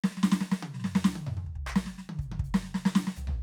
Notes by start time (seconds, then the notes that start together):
0.04 snare
0.12 snare
0.18 snare
0.24 snare
0.32 snare
0.41 snare
0.52 snare
0.63 high tom
0.74 snare
0.80 snare
0.85 snare
0.96 snare
1.05 snare
1.16 high tom
1.27 mid tom
1.38 high tom
1.47 kick
1.56 kick
1.67 percussion
1.76 snare
1.87 snare
1.99 snare
2.04 hi-hat pedal
2.10 high tom
2.19 kick, hi-hat pedal
2.32 high tom
2.40 kick
2.45 hi-hat pedal
2.55 snare
2.75 snare
2.86 snare
2.96 snare
3.08 snare
3.17 floor tom, hi-hat pedal
3.28 floor tom